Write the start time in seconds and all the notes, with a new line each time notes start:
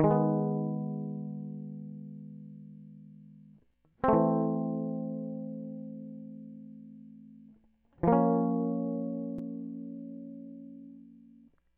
0.00 D#3
0.04 G#3
0.11 B3
4.04 C4
4.09 A3
4.14 E3
8.04 E3 A#3
8.10 F3 C#4